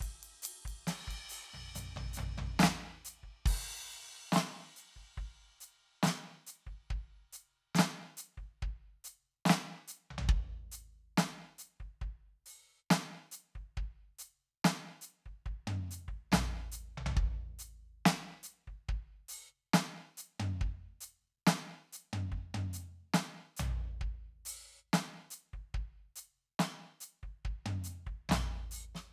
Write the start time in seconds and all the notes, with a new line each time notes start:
0.01 kick, ride
0.23 ride
0.43 hi-hat pedal, ride
0.65 kick, ride
0.87 snare, ride
1.08 kick, ride
1.30 hi-hat pedal, ride
1.54 floor tom, high tom
1.76 floor tom, hi-hat pedal, high tom
1.96 floor tom, high tom
2.14 hi-hat pedal, high tom
2.19 floor tom
2.38 floor tom, high tom
2.60 snare
2.63 snare
3.05 hi-hat pedal
3.24 kick
3.46 kick, crash
3.90 hi-hat pedal
4.32 snare
4.36 snare
4.77 hi-hat pedal
4.96 kick
5.18 kick
5.61 hi-hat pedal
6.03 snare
6.06 snare
6.47 hi-hat pedal
6.67 kick
6.91 kick
7.33 hi-hat pedal
7.75 snare
7.79 snare
8.17 hi-hat pedal
8.38 kick
8.63 kick
9.05 hi-hat pedal
9.46 snare
9.50 snare
9.88 hi-hat pedal
10.11 floor tom
10.18 floor tom
10.29 kick
10.72 hi-hat pedal
11.18 snare
11.59 hi-hat pedal
11.80 kick
12.02 kick
12.46 hi-hat pedal
12.91 snare
13.32 hi-hat pedal
13.56 kick
13.77 kick
14.19 hi-hat pedal
14.65 snare
15.02 hi-hat pedal
15.26 kick
15.46 kick
15.67 high tom
15.91 hi-hat pedal
16.08 kick
16.32 snare, floor tom
16.72 hi-hat pedal
16.98 floor tom
17.06 floor tom
17.17 kick
17.59 hi-hat pedal
18.06 snare
18.43 hi-hat pedal
18.68 kick
18.89 kick
19.29 hi-hat pedal
19.74 snare
20.18 hi-hat pedal
20.40 high tom
20.61 kick
21.01 hi-hat pedal
21.47 snare
21.93 hi-hat pedal
22.13 high tom
22.32 kick
22.55 high tom
22.74 hi-hat pedal
23.14 snare
23.57 floor tom, hi-hat pedal
24.01 kick
24.10 kick
24.46 hi-hat pedal
24.94 snare
25.31 hi-hat pedal
25.54 kick
25.75 kick
26.16 hi-hat pedal
26.60 snare
27.01 hi-hat pedal
27.23 kick
27.45 kick
27.66 high tom
27.84 hi-hat pedal
28.07 kick
28.29 snare, floor tom
28.71 hi-hat pedal
28.95 snare